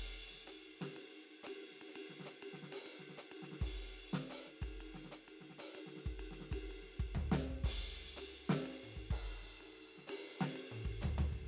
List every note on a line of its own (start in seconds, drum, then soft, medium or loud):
0.30 snare soft
0.33 snare soft
0.37 snare soft
0.47 hi-hat pedal medium
0.47 ride medium
0.81 snare soft
0.81 ride loud
0.90 hi-hat pedal soft
0.96 ride medium
1.43 hi-hat pedal loud
1.43 ride loud
1.71 snare soft
1.81 ride medium
1.88 hi-hat pedal soft
1.96 ride medium
2.09 snare soft
2.19 snare soft
2.25 hi-hat pedal loud
2.42 ride medium
2.53 snare soft
2.62 snare soft
2.72 hi-hat pedal medium
2.72 ride loud
2.86 ride medium
2.99 snare soft
3.09 snare soft
3.18 hi-hat pedal loud
3.31 ride medium
3.42 snare soft
3.51 snare soft
3.60 kick soft
3.60 snare soft
3.60 ride medium
3.76 ride soft
4.13 snare medium
4.30 hi-hat pedal loud
4.30 ride medium
4.46 snare soft
4.62 kick soft
4.62 ride medium
4.70 hi-hat pedal soft
4.80 ride medium
4.94 snare soft
5.04 snare soft
5.11 hi-hat pedal loud
5.28 ride medium
5.40 snare soft
5.50 snare soft
5.58 hi-hat pedal loud
5.58 ride medium
5.75 ride medium
5.79 hi-hat pedal soft
5.86 snare soft
5.96 snare soft
6.06 kick soft
6.19 ride medium
6.31 snare soft
6.40 snare soft
6.51 kick soft
6.51 ride loud
6.71 ride medium
6.82 snare soft
6.99 kick soft
7.15 floor tom medium
7.32 snare medium
7.50 kick soft
7.64 kick medium
7.64 ride medium
8.04 snare soft
8.16 hi-hat pedal loud
8.16 ride medium
8.49 snare medium
8.49 ride loud
8.61 hi-hat pedal soft
8.66 ride medium
8.83 high tom soft
8.96 kick soft
9.10 kick medium
9.10 crash medium
9.42 snare soft
9.60 hi-hat pedal soft
9.60 ride medium
9.97 snare soft
10.07 hi-hat pedal medium
10.07 ride loud
10.41 snare medium
10.41 ride medium
10.52 hi-hat pedal soft
10.52 ride medium
10.71 high tom medium
10.85 kick soft
11.01 floor tom medium
11.01 hi-hat pedal loud
11.18 floor tom medium
11.22 hi-hat pedal soft
11.32 kick soft